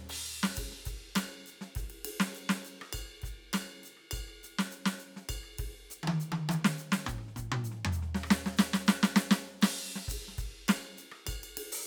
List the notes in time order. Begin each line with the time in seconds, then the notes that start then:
0.10 crash
0.21 hi-hat pedal
0.44 snare
0.55 kick, hi-hat pedal, ride
0.72 snare
0.80 snare
0.86 kick, hi-hat pedal, ride
0.95 kick
1.16 snare, hi-hat pedal, ride bell
1.27 snare
1.47 hi-hat pedal, ride
1.62 snare
1.76 kick, snare, hi-hat pedal, ride
1.83 kick, snare
1.86 kick, snare
1.90 snare, ride
2.05 hi-hat pedal, ride
2.20 snare
2.35 hi-hat pedal, ride
2.50 snare
2.65 hi-hat pedal, ride
2.82 cross-stick
2.93 kick, hi-hat pedal, ride bell
3.22 kick, hi-hat pedal, ride
3.32 kick
3.54 snare, hi-hat pedal, ride bell
3.65 snare
3.84 hi-hat pedal, ride
3.97 cross-stick
4.12 kick, hi-hat pedal, ride bell
4.19 kick
4.28 cross-stick
4.44 hi-hat pedal, ride
4.59 snare
4.71 hi-hat pedal, ride
4.86 snare
5.00 hi-hat pedal, ride
5.17 snare
5.29 kick, hi-hat pedal, ride bell
5.38 kick
5.44 cross-stick
5.58 kick, hi-hat pedal, ride
5.66 kick
5.91 hi-hat pedal
6.04 high tom
6.08 high tom
6.20 hi-hat pedal
6.32 high tom
6.49 hi-hat pedal, high tom
6.55 high tom
6.65 snare
6.79 hi-hat pedal
6.92 snare
7.07 kick, hi-hat pedal, mid tom
7.19 cross-stick
7.28 snare
7.37 kick, hi-hat pedal, mid tom
7.52 mid tom
7.65 hi-hat pedal
7.72 snare
7.85 floor tom
7.93 hi-hat pedal
8.02 snare
8.15 snare
8.24 cross-stick, hi-hat pedal
8.31 snare
8.46 snare
8.58 snare, hi-hat pedal
8.74 snare
8.87 snare, hi-hat pedal
9.03 snare
9.16 snare, hi-hat pedal
9.31 snare
9.62 snare, crash
9.96 snare
10.08 kick, hi-hat pedal, ride
10.14 kick
10.18 kick
10.28 snare
10.33 snare
10.36 kick, snare, hi-hat pedal, ride
10.39 snare
10.45 kick
10.50 kick
10.69 snare, hi-hat pedal, ride bell
10.98 hi-hat pedal, ride
11.12 cross-stick
11.26 kick, snare, hi-hat pedal, ride bell
11.37 kick
11.44 ride bell
11.58 hi-hat pedal, ride
11.73 open hi-hat